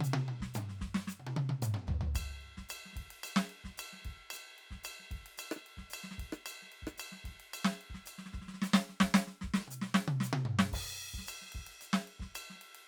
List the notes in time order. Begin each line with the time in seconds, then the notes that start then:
0.01 hi-hat pedal, high tom
0.14 high tom
0.28 high tom
0.41 kick, snare
0.54 hi-hat pedal, mid tom
0.69 snare
0.78 kick, snare
0.82 snare
0.95 snare
1.08 snare, hi-hat pedal
1.20 high tom
1.27 high tom
1.37 high tom
1.50 high tom
1.62 hi-hat pedal, mid tom
1.74 mid tom
1.87 kick, floor tom
1.94 kick
2.01 floor tom
2.15 kick, hi-hat pedal, ride bell
2.28 kick
2.41 ride
2.58 kick, snare
2.69 hi-hat pedal, ride bell
2.86 snare
2.93 kick, snare
2.97 ride
3.01 kick
3.11 ride
3.24 hi-hat pedal, ride bell
3.36 snare
3.50 ride
3.64 kick, snare
3.78 hi-hat pedal, ride bell
3.93 snare
4.02 kick, snare, ride
4.08 snare
4.11 snare
4.14 snare
4.17 snare
4.31 hi-hat pedal, ride bell
4.58 ride
4.71 kick, snare
4.84 hi-hat pedal, ride bell
5.00 snare
5.10 kick, snare, ride
5.26 ride
5.38 hi-hat pedal, ride bell
5.52 cross-stick
5.57 cross-stick
5.67 ride
5.77 kick, snare
5.90 hi-hat pedal, ride bell
6.04 snare
6.11 snare
6.19 kick, ride
6.33 cross-stick
6.46 hi-hat pedal, ride bell
6.63 snare
6.72 ride
6.83 kick
6.87 cross-stick
6.98 hi-hat pedal, ride bell
7.12 snare
7.25 kick, snare, ride
7.32 cross-stick, snare
7.40 ride
7.54 hi-hat pedal, ride bell
7.65 snare
7.72 snare
7.81 ride
7.90 kick
7.95 snare
8.06 hi-hat pedal, ride bell
8.19 snare
8.26 snare
8.33 kick, snare
8.40 kick, snare
8.48 snare
8.54 snare
8.62 snare, hi-hat pedal
8.74 snare
8.90 snare
9.01 kick, snare
9.15 snare, hi-hat pedal
9.27 snare
9.42 kick, snare
9.50 kick
9.54 snare
9.68 hi-hat pedal, high tom
9.82 snare
9.95 snare
10.08 high tom
10.21 snare, hi-hat pedal
10.33 high tom
10.46 mid tom
10.59 snare
10.72 kick, hi-hat pedal, crash
10.85 kick
11.14 kick
11.19 snare
11.27 hi-hat pedal, ride bell
11.42 snare
11.47 snare
11.52 kick, ride
11.65 snare, ride
11.81 hi-hat pedal, ride bell
11.94 snare
12.08 ride
12.20 kick, snare
12.35 hi-hat pedal, ride bell
12.50 snare
12.56 snare
12.62 ride
12.75 ride